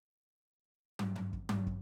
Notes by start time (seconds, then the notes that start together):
0.99 floor tom, high tom
1.16 floor tom, high tom
1.33 kick
1.49 floor tom, high tom
1.67 kick